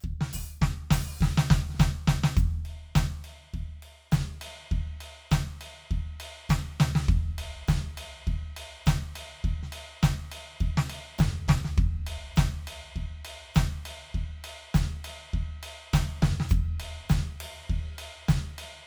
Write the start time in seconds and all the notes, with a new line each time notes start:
0.01 kick, percussion
0.08 crash
0.21 snare
0.33 kick, percussion
0.62 kick, snare
0.91 kick, snare, percussion
1.21 kick, snare
1.38 snare
1.51 kick, snare
1.70 snare
1.75 snare
1.80 kick, snare, percussion
2.08 kick, snare
2.24 snare
2.37 kick, percussion
2.65 ride bell
2.96 kick, snare, percussion
3.25 ride bell
3.54 kick, ride
3.83 ride
4.12 kick, snare, ride, percussion
4.42 ride bell
4.72 kick, ride
5.01 ride bell
5.31 kick, snare, ride, percussion
5.61 ride bell
5.91 kick, ride
6.20 ride bell
6.50 kick, snare, ride bell, percussion
6.80 snare, floor tom
6.96 snare
7.09 kick, snare, ride
7.39 ride bell
7.68 kick, snare, ride, percussion
7.88 kick
7.98 ride bell
8.27 kick, ride
8.57 ride bell
8.86 kick, snare, percussion
9.16 ride bell
9.44 kick, ride
9.63 snare
9.73 ride bell
10.03 kick, snare, percussion
10.32 ride bell
10.60 kick, ride, percussion
10.78 snare
10.90 kick, ride bell
11.19 kick, snare, mid tom, percussion
11.48 kick, snare, floor tom
11.65 snare
11.78 kick
12.02 kick
12.07 ride bell
12.13 kick
12.36 kick, snare, percussion
12.68 ride bell
12.96 kick, ride
13.22 kick, ride bell
13.55 kick, snare, ride, percussion
13.86 ride bell
14.15 kick, ride
14.43 kick, ride bell
14.75 kick, snare, percussion
14.99 kick
15.05 ride bell
15.34 kick, ride
15.56 kick
15.63 ride bell
15.94 kick, snare, ride, percussion
16.23 kick, snare, mid tom
16.40 snare
16.50 kick, percussion
16.80 ride bell
17.10 kick, snare, percussion
17.32 kick
17.41 ride
17.70 kick
17.93 kick
17.99 ride bell
18.29 kick, snare, ride, percussion
18.59 ride bell